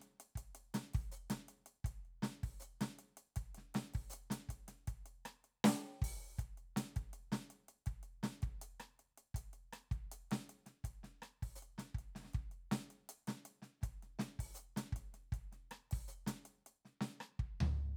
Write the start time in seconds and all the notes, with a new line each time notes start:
0.02 closed hi-hat
0.20 closed hi-hat
0.35 kick, closed hi-hat
0.55 closed hi-hat
0.74 snare, closed hi-hat
0.94 kick, open hi-hat
1.12 hi-hat pedal
1.30 snare, closed hi-hat
1.48 closed hi-hat
1.66 closed hi-hat
1.84 kick, closed hi-hat
2.05 closed hi-hat
2.22 snare, closed hi-hat
2.43 kick, open hi-hat
2.60 closed hi-hat, hi-hat pedal
2.81 snare, closed hi-hat
2.99 closed hi-hat
3.17 closed hi-hat
3.36 kick, closed hi-hat
3.55 snare, closed hi-hat
3.74 snare, closed hi-hat
3.94 kick, open hi-hat
4.10 closed hi-hat, hi-hat pedal
4.30 snare, closed hi-hat
4.49 kick, closed hi-hat
4.68 snare, closed hi-hat
4.88 kick, closed hi-hat
5.06 closed hi-hat
5.25 cross-stick, closed hi-hat
5.44 closed hi-hat
5.64 snare, open hi-hat
5.67 snare, open hi-hat
6.02 kick, open hi-hat
6.37 kick, closed hi-hat, hi-hat pedal
6.58 closed hi-hat
6.76 snare, closed hi-hat
6.96 kick, closed hi-hat
7.13 closed hi-hat
7.32 snare, closed hi-hat
7.50 closed hi-hat
7.68 closed hi-hat
7.86 kick, closed hi-hat
8.03 closed hi-hat
8.23 snare, closed hi-hat
8.42 kick, closed hi-hat
8.62 closed hi-hat
8.80 cross-stick, closed hi-hat
8.99 closed hi-hat
9.18 closed hi-hat
9.34 kick, closed hi-hat
9.53 closed hi-hat
9.73 cross-stick, closed hi-hat
9.91 kick, closed hi-hat
10.12 closed hi-hat
10.31 snare, closed hi-hat
10.49 closed hi-hat
10.66 snare, closed hi-hat
10.84 kick, closed hi-hat
11.03 snare, closed hi-hat
11.22 cross-stick, closed hi-hat
11.43 kick, open hi-hat
11.56 hi-hat pedal
11.62 closed hi-hat
11.78 snare, closed hi-hat
11.95 kick
11.99 closed hi-hat
12.15 snare, closed hi-hat
12.19 snare
12.22 snare
12.24 snare
12.29 snare
12.34 kick, closed hi-hat
12.51 closed hi-hat
12.71 snare, closed hi-hat
12.90 closed hi-hat
13.09 closed hi-hat
13.27 snare, closed hi-hat
13.45 closed hi-hat
13.62 snare, closed hi-hat
13.81 kick, snare, closed hi-hat
14.03 snare, closed hi-hat
14.19 snare, closed hi-hat
14.39 kick, open hi-hat
14.55 hi-hat pedal
14.59 closed hi-hat
14.76 snare, closed hi-hat
14.93 kick, closed hi-hat
15.13 snare, closed hi-hat
15.32 kick, closed hi-hat
15.52 snare, closed hi-hat
15.71 cross-stick, closed hi-hat
15.91 kick, open hi-hat
16.08 closed hi-hat, hi-hat pedal
16.27 snare, closed hi-hat
16.45 closed hi-hat
16.66 closed hi-hat
16.85 snare
17.01 snare
17.20 cross-stick
17.39 kick
17.60 floor tom